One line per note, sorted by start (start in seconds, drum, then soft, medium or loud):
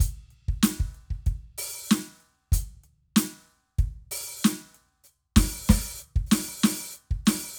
0.01 closed hi-hat loud
0.01 kick medium
0.31 closed hi-hat soft
0.49 kick medium
0.64 closed hi-hat loud
0.64 snare loud
0.81 kick medium
0.96 closed hi-hat soft
1.11 kick soft
1.27 kick medium
1.27 closed hi-hat soft
1.59 open hi-hat loud
1.92 open hi-hat medium
1.92 snare loud
1.92 hi-hat pedal medium
2.21 closed hi-hat soft
2.53 closed hi-hat loud
2.53 kick medium
2.85 closed hi-hat soft
3.17 closed hi-hat loud
3.17 snare loud
3.79 kick medium
3.79 closed hi-hat soft
4.12 open hi-hat loud
4.45 open hi-hat loud
4.45 snare loud
4.45 hi-hat pedal medium
4.76 closed hi-hat soft
5.05 hi-hat pedal soft
5.37 open hi-hat loud
5.37 kick medium
5.37 snare loud
5.70 open hi-hat loud
5.70 kick medium
5.70 snare loud
6.00 hi-hat pedal medium
6.17 kick medium
6.27 hi-hat pedal soft
6.32 open hi-hat loud
6.32 snare loud
6.64 open hi-hat loud
6.64 snare loud
6.94 hi-hat pedal medium
7.12 kick medium
7.26 open hi-hat loud
7.26 snare loud
7.26 hi-hat pedal soft